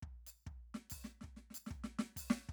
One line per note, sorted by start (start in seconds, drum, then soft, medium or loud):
0.03 kick soft
0.27 percussion medium
0.47 kick soft
0.75 snare soft
0.90 kick soft
0.90 percussion medium
1.05 snare soft
1.21 kick soft
1.21 snare soft
1.37 snare soft
1.51 snare soft
1.55 percussion medium
1.67 snare soft
1.71 kick soft
1.84 snare soft
1.99 snare medium
2.17 kick soft
2.17 percussion medium
2.31 snare medium
2.49 kick soft